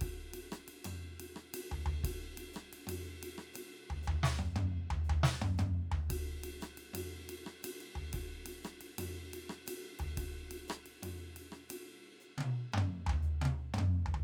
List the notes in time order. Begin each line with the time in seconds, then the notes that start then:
0.01 kick, ride
0.34 ride
0.52 cross-stick, hi-hat pedal
0.68 ride
0.85 mid tom, ride bell
1.20 ride
1.36 cross-stick
1.53 hi-hat pedal, ride
1.72 floor tom
1.81 kick
1.86 floor tom
2.04 kick, ride
2.38 ride
2.53 cross-stick, hi-hat pedal
2.73 ride
2.87 mid tom, ride
3.03 hi-hat pedal
3.23 ride
3.38 cross-stick
3.54 hi-hat pedal, ride
3.90 floor tom
4.03 hi-hat pedal
4.08 floor tom
4.23 snare
4.39 mid tom
4.56 hi-hat pedal, mid tom
4.90 floor tom
5.04 hi-hat pedal
5.10 floor tom
5.23 snare
5.42 mid tom
5.58 hi-hat pedal, mid tom
5.92 floor tom
6.10 kick, ride
6.44 ride
6.61 cross-stick, hi-hat pedal
6.78 ride
6.94 mid tom, ride
7.29 ride
7.46 cross-stick
7.63 hi-hat pedal, ride
7.81 ride
7.95 floor tom
8.13 kick, ride
8.46 ride
8.64 cross-stick, hi-hat pedal
8.81 ride
8.98 mid tom, ride
9.13 hi-hat pedal
9.33 ride
9.49 cross-stick
9.66 hi-hat pedal, ride
9.99 floor tom, ride
10.17 kick, ride
10.51 ride
10.68 cross-stick, hi-hat pedal
10.86 ride
11.03 mid tom, ride
11.18 hi-hat pedal
11.36 ride
11.52 cross-stick
11.69 hi-hat pedal, ride
12.20 hi-hat pedal
12.38 high tom
12.41 high tom
12.72 hi-hat pedal, mid tom
12.78 mid tom
13.07 floor tom
13.10 floor tom
13.22 hi-hat pedal
13.42 high tom
13.45 high tom
13.74 hi-hat pedal, mid tom
13.78 mid tom
14.06 floor tom
14.14 floor tom